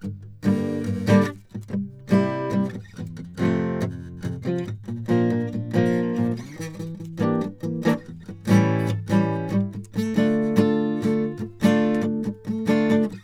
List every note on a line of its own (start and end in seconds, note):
0.03 0.26 G2
0.03 0.15 D3
0.44 0.84 G2
0.44 0.87 D3
0.44 0.86 G3
0.44 1.09 A#3
0.51 1.10 D4
0.86 1.12 G2
1.09 1.34 D3
1.09 1.32 G3
1.09 1.33 A#3
1.09 1.37 D4
1.56 1.69 C3
1.70 2.09 C3
1.70 1.86 G3
2.09 2.51 C3
2.09 2.52 G3
2.14 2.73 E4
2.14 2.77 G4
2.52 2.74 C3
2.52 2.71 G3
2.73 2.95 E2
2.95 3.17 E2
3.18 3.37 F2
3.39 3.82 F2
3.39 3.82 C3
3.39 3.91 F3
3.44 3.90 A3
3.44 3.90 C4
3.82 4.24 F2
3.82 4.27 C3
4.24 4.90 E2
4.24 4.43 C3
4.46 4.65 C3
4.46 4.68 F3
4.90 4.97 A#2
5.07 5.31 A#2
5.07 5.31 F3
5.07 5.54 A#3
5.13 6.37 D4
5.32 5.48 A#2
5.32 5.52 F3
5.54 5.65 A#2
5.54 5.61 F3
5.73 5.85 A#2
5.73 6.15 F3
5.79 6.38 A#3
6.15 6.32 A#2
6.15 6.38 F3
6.39 6.54 C3
6.63 6.75 D#3
6.82 6.97 E3
7.02 7.19 E3
7.19 7.52 E3
7.19 7.43 A#3
7.23 7.56 D4
7.23 7.52 G4
7.43 7.54 A#3
7.65 7.84 E3
7.65 7.88 A#3
7.87 8.02 E3
7.87 8.00 A#3
7.87 8.03 D4
8.08 8.24 E2
8.24 8.35 F2
8.47 8.96 A2
8.47 8.89 E3
8.47 8.95 G3
8.52 8.96 C#4
8.52 9.00 E4
8.52 9.03 A4
8.89 9.09 E3
9.09 9.45 A2
9.09 9.52 E3
9.09 9.52 G3
9.14 9.23 C#4
9.14 9.79 E4
9.23 9.61 C#4
9.50 9.65 G#2
9.50 9.66 G3
9.98 10.16 A3
10.16 10.57 D3
10.16 10.58 A3
10.16 10.59 D4
10.16 10.60 F4
10.57 11.02 D3
10.57 11.04 A3
10.57 11.02 D4
10.57 11.50 F4
10.57 11.00 A4
11.03 11.49 D3
11.03 11.36 A3
11.03 11.29 D4
11.63 12.02 D3
11.63 12.03 A3
11.63 11.90 D4
11.63 12.07 F4
11.68 12.65 A4
11.90 12.04 D4
12.03 12.38 D3
12.03 12.27 A3
12.03 12.24 D4
12.28 12.39 G#3
12.49 12.68 A3
12.67 13.10 D3
12.67 12.91 A3
12.67 12.91 D4
12.71 12.93 F4
12.91 13.11 A3
12.91 13.11 D4
12.91 13.13 F4